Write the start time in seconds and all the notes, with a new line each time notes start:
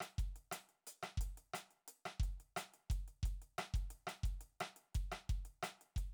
0.01 cross-stick, closed hi-hat
0.19 kick, closed hi-hat
0.36 closed hi-hat
0.52 cross-stick, closed hi-hat
0.69 closed hi-hat
0.87 closed hi-hat
1.03 cross-stick, closed hi-hat
1.18 kick, closed hi-hat
1.38 closed hi-hat
1.54 closed hi-hat, cross-stick
1.71 closed hi-hat
1.88 closed hi-hat
2.06 cross-stick, closed hi-hat
2.20 kick, closed hi-hat
2.41 closed hi-hat
2.57 closed hi-hat, cross-stick
2.74 closed hi-hat
2.90 kick, closed hi-hat
3.08 closed hi-hat
3.23 kick, closed hi-hat
3.42 closed hi-hat
3.59 cross-stick, closed hi-hat
3.74 kick, closed hi-hat
3.91 closed hi-hat
4.07 cross-stick, closed hi-hat
4.24 kick, closed hi-hat
4.41 closed hi-hat
4.61 cross-stick, closed hi-hat
4.77 closed hi-hat
4.95 kick, closed hi-hat
5.12 cross-stick, closed hi-hat
5.30 kick, closed hi-hat
5.46 closed hi-hat
5.63 closed hi-hat, cross-stick
5.82 closed hi-hat
5.97 kick, closed hi-hat